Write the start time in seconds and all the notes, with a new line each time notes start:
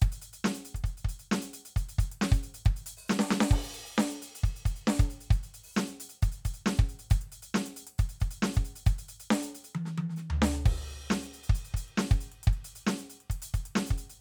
0.02 kick, closed hi-hat
0.12 closed hi-hat
0.22 closed hi-hat
0.33 closed hi-hat
0.44 snare
0.55 closed hi-hat
0.65 closed hi-hat
0.75 kick, closed hi-hat
0.84 closed hi-hat, kick
0.97 closed hi-hat
1.05 kick
1.09 closed hi-hat
1.19 closed hi-hat
1.31 snare
1.42 closed hi-hat
1.53 closed hi-hat
1.65 closed hi-hat
1.76 closed hi-hat, kick
1.89 closed hi-hat
1.99 closed hi-hat, kick
2.12 closed hi-hat
2.21 snare
2.32 closed hi-hat, kick
2.43 closed hi-hat
2.54 closed hi-hat
2.65 kick, closed hi-hat
2.76 closed hi-hat
2.86 closed hi-hat
2.97 open hi-hat
3.08 snare, hi-hat pedal
3.19 snare
3.31 snare
3.41 snare
3.51 kick, crash
3.64 closed hi-hat
3.74 closed hi-hat
3.86 closed hi-hat
3.98 snare
4.10 closed hi-hat
4.22 closed hi-hat
4.35 closed hi-hat
4.44 closed hi-hat, kick
4.56 closed hi-hat
4.65 closed hi-hat, kick
4.76 closed hi-hat
4.87 snare
4.99 closed hi-hat, kick
5.10 closed hi-hat
5.21 closed hi-hat
5.31 closed hi-hat, kick
5.43 closed hi-hat
5.54 closed hi-hat
5.64 open hi-hat
5.77 snare, hi-hat pedal
5.87 closed hi-hat
6.00 closed hi-hat
6.09 closed hi-hat
6.22 closed hi-hat, kick
6.32 closed hi-hat
6.45 closed hi-hat, kick
6.54 closed hi-hat
6.66 snare
6.77 kick, closed hi-hat
6.89 closed hi-hat
6.99 closed hi-hat
7.10 closed hi-hat, kick
7.21 closed hi-hat
7.32 closed hi-hat
7.42 closed hi-hat
7.54 snare
7.66 closed hi-hat
7.76 closed hi-hat
7.87 closed hi-hat
7.98 closed hi-hat, kick
8.09 closed hi-hat
8.20 closed hi-hat, kick
8.31 closed hi-hat
8.42 snare
8.54 closed hi-hat, kick
8.65 closed hi-hat
8.76 closed hi-hat
8.86 closed hi-hat, kick
8.98 closed hi-hat
9.20 closed hi-hat
9.31 snare
9.43 closed hi-hat
9.55 closed hi-hat
9.64 closed hi-hat
9.75 high tom
9.86 snare
9.98 high tom
10.10 snare
10.16 snare, hi-hat pedal
10.30 floor tom
10.36 kick
10.42 snare
10.54 cross-stick
10.66 kick, crash
10.75 closed hi-hat
10.89 closed hi-hat
10.99 closed hi-hat
11.10 snare
11.23 closed hi-hat
11.33 closed hi-hat
11.43 closed hi-hat
11.50 kick
11.55 closed hi-hat
11.74 closed hi-hat, kick
11.88 closed hi-hat
11.97 snare
12.11 closed hi-hat, kick
12.21 closed hi-hat
12.32 closed hi-hat
12.43 kick, closed hi-hat
12.53 closed hi-hat
12.64 closed hi-hat
12.75 closed hi-hat
12.87 snare
12.98 closed hi-hat
13.10 closed hi-hat
13.20 closed hi-hat
13.30 kick, closed hi-hat
13.42 closed hi-hat
13.54 closed hi-hat, kick
13.65 closed hi-hat
13.75 snare
13.86 closed hi-hat
13.91 kick
13.98 closed hi-hat
14.10 closed hi-hat